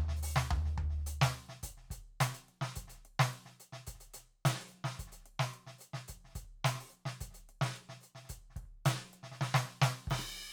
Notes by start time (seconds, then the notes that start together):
0.09 snare
0.17 hi-hat pedal
0.24 open hi-hat
0.37 snare, hi-hat pedal
0.52 kick, floor tom
0.66 snare
0.78 kick, floor tom
0.85 kick
0.91 snare
0.99 snare
1.07 closed hi-hat
1.22 snare
1.35 closed hi-hat
1.50 snare
1.64 closed hi-hat, kick
1.78 snare
1.84 snare
1.89 closed hi-hat, kick, snare
2.00 kick
2.21 closed hi-hat, snare
2.33 closed hi-hat, snare
2.49 closed hi-hat
2.62 snare
2.76 closed hi-hat, kick
2.83 kick
2.88 closed hi-hat, snare
2.95 snare
3.06 closed hi-hat
3.20 snare
3.34 closed hi-hat
3.46 snare
3.61 closed hi-hat
3.73 snare
3.88 closed hi-hat, kick
3.95 snare
4.00 closed hi-hat, snare
4.09 snare
4.11 closed hi-hat, snare
4.17 snare
4.46 closed hi-hat, snare
4.55 snare
4.60 open hi-hat
4.69 closed hi-hat, hi-hat pedal
4.85 snare
4.96 snare, hi-hat pedal
5.00 closed hi-hat, kick
5.05 kick, snare
5.13 closed hi-hat, snare
5.17 snare
5.21 snare
5.27 closed hi-hat
5.40 snare
5.55 closed hi-hat
5.67 snare
5.79 closed hi-hat, hi-hat pedal
5.94 snare
6.09 closed hi-hat, kick
6.25 snare
6.30 snare
6.34 closed hi-hat, kick, snare
6.45 kick
6.65 closed hi-hat, snare
6.75 snare
6.81 open hi-hat
6.90 hi-hat pedal
6.94 closed hi-hat
7.06 snare
7.20 closed hi-hat, kick, snare
7.27 kick
7.31 closed hi-hat, snare
7.38 snare
7.50 closed hi-hat
7.62 snare
7.77 closed hi-hat
7.90 snare
8.01 closed hi-hat, hi-hat pedal
8.16 snare
8.25 snare
8.30 closed hi-hat, kick
8.51 snare
8.57 kick, closed hi-hat
8.63 kick
8.66 kick
8.86 open hi-hat, snare
8.96 snare
9.14 hi-hat pedal, open hi-hat
9.24 snare
9.33 snare
9.42 kick, snare
9.55 snare
9.66 snare
9.83 snare
10.08 kick, snare, hi-hat pedal, crash
10.14 kick
10.18 kick, cross-stick
10.29 open hi-hat